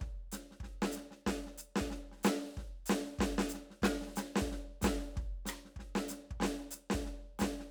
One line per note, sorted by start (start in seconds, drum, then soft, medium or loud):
0.01 kick soft
0.01 snare soft
0.32 snare soft
0.32 hi-hat pedal medium
0.52 snare soft
0.61 kick soft
0.61 snare soft
0.83 snare medium
0.92 hi-hat pedal medium
0.97 snare soft
1.11 snare soft
1.27 kick soft
1.27 snare medium
1.47 snare soft
1.58 snare soft
1.58 hi-hat pedal medium
1.76 snare medium
1.81 kick soft
1.91 snare soft
2.12 snare soft
2.17 snare soft
2.20 snare soft
2.23 snare soft
2.23 hi-hat pedal medium
2.25 snare loud
2.45 snare soft
2.57 kick soft
2.57 snare soft
2.86 snare loud
2.86 hi-hat pedal medium
3.05 snare soft
3.10 snare soft
3.14 snare soft
3.19 kick soft
3.19 snare soft
3.19 snare loud
3.39 snare medium
3.49 hi-hat pedal medium
3.54 snare soft
3.71 snare soft
3.83 kick soft
3.83 snare loud
4.02 snare soft
4.08 snare soft
4.16 snare soft
4.16 hi-hat pedal medium
4.25 snare soft
4.36 snare loud
4.42 kick soft
4.52 snare soft
4.82 kick soft
4.82 snare soft
4.82 hi-hat pedal medium
4.85 snare loud
5.00 snare soft
5.17 kick soft
5.17 snare soft
5.46 cross-stick medium
5.46 snare medium
5.46 hi-hat pedal medium
5.65 snare soft
5.77 kick soft
5.77 snare soft
5.96 snare medium
6.09 snare soft
6.09 hi-hat pedal medium
6.31 kick soft
6.41 snare medium
6.43 snare loud
6.60 snare soft
6.71 snare soft
6.71 hi-hat pedal medium
6.91 snare medium
6.95 kick soft
7.06 snare soft
7.40 kick soft
7.40 snare medium
7.40 hi-hat pedal medium
7.42 snare medium
7.60 snare soft